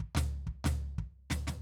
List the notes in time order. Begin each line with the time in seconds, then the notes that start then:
0.00 kick
0.15 snare, floor tom
0.47 kick
0.64 snare, floor tom
0.98 kick
1.30 snare, floor tom
1.47 snare, floor tom